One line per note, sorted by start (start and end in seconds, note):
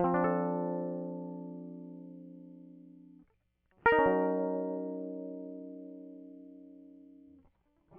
0.00 3.26 F3
0.04 3.25 C4
0.14 3.25 D4
0.24 2.50 A4
3.86 7.13 A#4
3.92 7.39 D#4
3.99 7.43 C#4
4.07 7.43 F#3